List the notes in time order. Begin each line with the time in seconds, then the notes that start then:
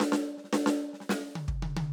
0.00 snare
0.12 snare
0.37 snare
0.44 snare
0.53 snare
0.66 snare
0.93 snare
1.00 snare
1.09 snare
1.35 high tom
1.48 kick
1.62 high tom
1.76 high tom